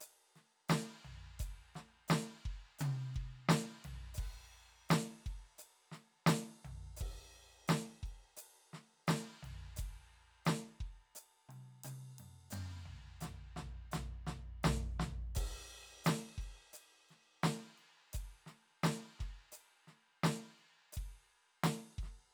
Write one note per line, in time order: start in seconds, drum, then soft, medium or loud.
0.01 hi-hat pedal medium
0.01 ride medium
0.36 snare soft
0.36 ride soft
0.69 snare loud
0.69 hi-hat pedal medium
0.69 ride soft
1.05 floor tom soft
1.05 ride soft
1.40 kick soft
1.40 hi-hat pedal medium
1.40 ride soft
1.75 snare soft
1.75 ride soft
2.08 snare loud
2.08 hi-hat pedal medium
2.08 ride soft
2.46 kick soft
2.79 hi-hat pedal medium
2.79 high tom loud
2.79 ride soft
3.15 kick soft
3.15 ride soft
3.49 snare loud
3.49 hi-hat pedal medium
3.49 ride soft
3.85 floor tom medium
3.85 ride soft
4.15 kick soft
4.15 hi-hat pedal medium
4.15 crash soft
4.90 snare loud
4.90 hi-hat pedal medium
4.90 ride medium
5.26 kick soft
5.26 ride soft
5.59 hi-hat pedal medium
5.59 ride soft
5.92 snare soft
5.92 ride soft
6.27 snare loud
6.27 hi-hat pedal medium
6.27 ride medium
6.65 floor tom soft
6.65 ride soft
6.97 hi-hat pedal medium
6.97 crash soft
7.01 kick soft
7.68 snare loud
7.68 hi-hat pedal medium
7.68 ride medium
8.03 kick soft
8.03 ride soft
8.37 hi-hat pedal medium
8.37 ride medium
8.73 snare soft
8.73 ride soft
9.08 snare loud
9.08 hi-hat pedal medium
9.08 ride soft
9.43 floor tom soft
9.43 ride soft
9.77 kick soft
9.77 hi-hat pedal medium
9.77 ride medium
10.46 snare loud
10.46 hi-hat pedal medium
10.46 ride soft
10.81 kick soft
11.16 hi-hat pedal medium
11.16 ride soft
11.49 high tom soft
11.49 ride soft
11.84 hi-hat pedal medium
11.84 high tom medium
11.84 ride medium
12.19 mid tom soft
12.19 ride soft
12.51 hi-hat pedal medium
12.51 mid tom medium
12.51 ride soft
12.86 floor tom soft
13.21 snare soft
13.21 floor tom soft
13.21 hi-hat pedal medium
13.57 snare soft
13.57 floor tom medium
13.92 snare medium
13.92 floor tom medium
13.92 hi-hat pedal medium
14.27 snare medium
14.27 floor tom medium
14.64 snare loud
14.64 floor tom medium
14.64 hi-hat pedal medium
15.00 snare medium
15.00 floor tom medium
15.36 kick medium
15.36 hi-hat pedal medium
15.36 crash medium
16.05 snare loud
16.05 hi-hat pedal medium
16.05 ride medium
16.38 kick soft
16.38 ride soft
16.74 hi-hat pedal medium
16.74 ride soft
17.09 snare soft
17.09 ride soft
17.44 snare loud
17.44 hi-hat pedal medium
17.44 ride soft
17.78 ride soft
18.14 kick soft
18.14 hi-hat pedal medium
18.14 ride medium
18.47 snare soft
18.47 ride soft
18.84 snare loud
18.84 hi-hat pedal medium
18.84 ride soft
19.20 kick soft
19.20 snare soft
19.20 ride soft
19.52 hi-hat pedal medium
19.52 ride soft
19.88 snare soft
19.88 ride soft
20.24 snare loud
20.24 hi-hat pedal medium
20.24 ride soft
20.58 ride soft
20.93 hi-hat pedal medium
20.93 ride medium
20.97 kick soft
21.26 ride soft
21.64 snare loud
21.64 hi-hat pedal medium
21.64 ride medium
21.99 kick soft
21.99 ride soft
22.03 snare soft